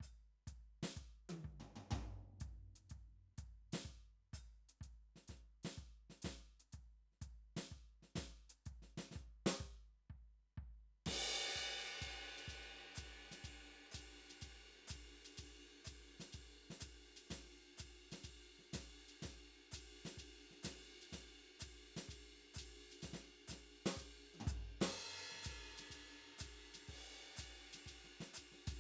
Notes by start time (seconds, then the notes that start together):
0.01 closed hi-hat, kick
0.48 kick, closed hi-hat
0.83 snare, closed hi-hat
0.97 kick, closed hi-hat
1.30 high tom
1.45 kick
1.60 floor tom
1.76 floor tom
1.91 kick, floor tom
2.41 kick, closed hi-hat
2.76 closed hi-hat
2.90 kick, closed hi-hat
3.38 kick, closed hi-hat
3.73 snare, closed hi-hat
3.85 kick
4.34 closed hi-hat, kick
4.69 closed hi-hat
4.82 kick, closed hi-hat
5.17 snare
5.28 kick, snare, closed hi-hat
5.64 snare, closed hi-hat
5.78 kick, closed hi-hat
6.11 snare
6.23 kick, snare, closed hi-hat
6.60 closed hi-hat
6.73 kick, closed hi-hat
7.13 snare
7.22 kick, closed hi-hat
7.57 snare, closed hi-hat
7.70 kick, closed hi-hat
8.03 snare
8.16 closed hi-hat, kick, snare
8.50 closed hi-hat
8.66 kick, closed hi-hat
8.83 snare
8.98 snare
9.12 snare
9.16 kick
9.47 open hi-hat, snare
9.61 kick
10.11 kick
10.58 kick
11.07 kick, snare, ride
11.56 kick, ride
12.02 kick, hi-hat pedal, ride
12.37 snare, ride
12.48 kick, ride
12.96 kick, hi-hat pedal, ride
13.32 snare, ride
13.45 kick, ride
13.92 kick, hi-hat pedal, ride
14.30 snare, ride
14.42 kick, ride
14.88 kick, hi-hat pedal, ride
15.26 ride
15.38 kick, ride
15.85 kick, hi-hat pedal, ride
16.21 snare, ride
16.33 kick, ride
16.71 snare
16.81 kick, hi-hat pedal, ride
17.17 ride
17.28 kick, snare, hi-hat pedal, ride
17.78 kick, hi-hat pedal, ride
18.12 snare, ride
18.24 kick, ride
18.60 snare
18.74 kick, snare, hi-hat pedal, ride
19.09 ride
19.23 kick, snare, ride
19.72 kick, hi-hat pedal, ride
20.06 snare, ride
20.18 kick, ride
20.52 snare
20.64 kick, snare, hi-hat pedal, ride
21.02 ride
21.09 hi-hat pedal
21.13 kick, snare, ride
21.23 snare
21.60 kick, hi-hat pedal, ride
21.97 snare, ride
22.09 kick, ride
22.55 kick, hi-hat pedal
22.59 ride
22.92 ride
23.01 kick, snare, hi-hat pedal, ride
23.14 snare
23.48 kick, snare, hi-hat pedal, ride
23.87 snare, ride
23.97 kick, ride
24.34 high tom
24.41 floor tom
24.48 kick, hi-hat pedal
24.82 snare, crash
24.95 hi-hat pedal
25.32 snare
25.37 snare
25.43 kick, hi-hat pedal, ride
25.78 snare, ride
25.91 kick, ride
26.30 snare
26.34 snare
26.36 snare, hi-hat pedal
26.41 kick, ride
26.75 snare, ride
26.88 kick, hi-hat pedal, ride
27.37 kick, hi-hat pedal, ride
27.74 snare, ride
27.87 kick, ride
28.05 snare
28.21 snare
28.34 kick, hi-hat pedal, ride
28.53 snare
28.68 kick, ride